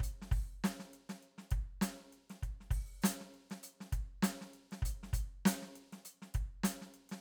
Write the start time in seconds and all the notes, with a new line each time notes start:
0.01 closed hi-hat, kick
0.23 snare
0.32 kick, open hi-hat
0.65 open hi-hat, snare, hi-hat pedal
0.80 snare
0.94 closed hi-hat
1.10 snare, closed hi-hat
1.23 closed hi-hat
1.39 snare
1.52 kick, closed hi-hat
1.82 closed hi-hat, snare
2.01 snare
2.13 closed hi-hat
2.31 snare, closed hi-hat
2.43 kick, closed hi-hat
2.61 snare
2.71 kick, open hi-hat
3.03 closed hi-hat, snare, hi-hat pedal
3.21 snare
3.35 closed hi-hat
3.51 snare, closed hi-hat
3.64 closed hi-hat
3.81 snare
3.93 kick, closed hi-hat
4.23 closed hi-hat, snare
4.42 snare
4.54 closed hi-hat
4.72 snare, closed hi-hat
4.83 closed hi-hat, kick
5.04 snare
5.14 closed hi-hat, kick
5.46 closed hi-hat, snare, hi-hat pedal
5.63 snare
5.76 closed hi-hat
5.93 snare, closed hi-hat
6.06 closed hi-hat
6.23 snare
6.35 kick, closed hi-hat
6.45 kick
6.64 closed hi-hat, snare
6.82 snare
6.95 closed hi-hat
7.10 snare, closed hi-hat